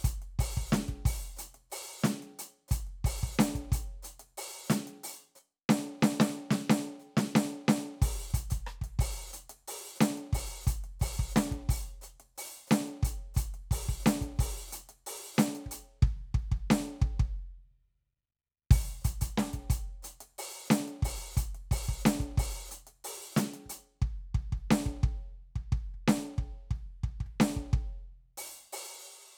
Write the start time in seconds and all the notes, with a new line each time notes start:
0.01 closed hi-hat, kick, hi-hat pedal
0.22 closed hi-hat
0.39 open hi-hat, kick
0.57 kick
0.70 closed hi-hat, snare, hi-hat pedal
0.88 kick, closed hi-hat
1.05 open hi-hat, kick
1.37 closed hi-hat, hi-hat pedal
1.54 closed hi-hat
1.70 open hi-hat, hi-hat pedal
2.02 closed hi-hat, snare, hi-hat pedal
2.22 closed hi-hat
2.39 open hi-hat
2.68 closed hi-hat, kick, hi-hat pedal
2.87 closed hi-hat
3.04 open hi-hat, kick
3.23 kick, open hi-hat
3.35 snare, hi-hat pedal
3.40 closed hi-hat
3.55 kick, closed hi-hat
3.72 open hi-hat, kick
4.03 closed hi-hat, hi-hat pedal
4.20 closed hi-hat
4.38 open hi-hat
4.68 closed hi-hat, snare, hi-hat pedal
4.87 closed hi-hat
5.04 open hi-hat
5.35 hi-hat pedal
5.69 snare
6.01 snare, hi-hat pedal
6.20 snare
6.51 snare
6.70 snare
7.00 hi-hat pedal
7.17 snare
7.35 snare
7.68 snare
8.02 open hi-hat, kick
8.30 kick, hi-hat pedal
8.34 closed hi-hat
8.50 closed hi-hat, kick
8.67 cross-stick
8.82 kick, closed hi-hat
8.99 open hi-hat, kick
9.31 closed hi-hat, hi-hat pedal
9.50 closed hi-hat
9.68 open hi-hat
9.97 hi-hat pedal
10.01 closed hi-hat, snare
10.18 closed hi-hat
10.33 open hi-hat, kick
10.64 closed hi-hat, kick, hi-hat pedal
10.84 closed hi-hat
11.00 open hi-hat, kick, hi-hat pedal
11.19 kick
11.32 hi-hat pedal
11.36 closed hi-hat, snare
11.52 kick, closed hi-hat
11.69 open hi-hat, kick
12.01 closed hi-hat, hi-hat pedal
12.20 closed hi-hat
12.35 open hi-hat, hi-hat pedal
12.67 snare, hi-hat pedal
12.71 closed hi-hat
12.88 closed hi-hat
13.03 open hi-hat, kick
13.34 closed hi-hat, kick, hi-hat pedal
13.54 closed hi-hat
13.71 open hi-hat, kick
13.89 kick
14.03 snare, hi-hat pedal
14.07 closed hi-hat
14.21 kick, closed hi-hat
14.36 kick, hi-hat pedal
14.40 open hi-hat
14.71 closed hi-hat, hi-hat pedal
14.89 closed hi-hat
15.07 open hi-hat
15.36 closed hi-hat, snare, hi-hat pedal
15.55 closed hi-hat
15.66 kick
15.71 open hi-hat
16.02 kick
16.07 ride
16.34 kick
16.39 crash, ride
16.52 kick
16.56 crash, ride
16.70 snare
17.02 kick
17.20 kick
17.25 ride
18.71 open hi-hat, kick
19.01 closed hi-hat, kick, hi-hat pedal
19.21 closed hi-hat, kick
19.38 snare
19.53 kick, closed hi-hat
19.70 open hi-hat, kick
20.03 closed hi-hat, hi-hat pedal
20.21 closed hi-hat
20.38 open hi-hat
20.67 closed hi-hat, snare, hi-hat pedal
20.88 closed hi-hat
21.03 open hi-hat, kick
21.35 closed hi-hat, kick, hi-hat pedal
21.55 closed hi-hat
21.71 open hi-hat, kick
21.89 kick
22.02 snare, hi-hat pedal
22.06 closed hi-hat
22.20 kick, closed hi-hat
22.38 open hi-hat, kick
22.69 closed hi-hat, hi-hat pedal
22.87 closed hi-hat
23.04 open hi-hat
23.35 closed hi-hat, snare, hi-hat pedal
23.54 closed hi-hat
23.66 closed hi-hat, kick
24.02 kick
24.35 kick
24.40 crash
24.52 kick
24.57 snare, crash, ride
24.71 snare
24.86 kick
25.03 kick
25.56 kick
25.72 kick
25.77 crash
25.94 kick
26.08 snare
26.38 kick, snare
26.71 kick, cross-stick, crash
26.75 high tom, ride
27.04 kick
27.08 snare, crash
27.20 kick
27.26 kick, snare, crash, ride
27.40 snare
27.57 kick
27.73 kick
28.38 open hi-hat
28.73 open hi-hat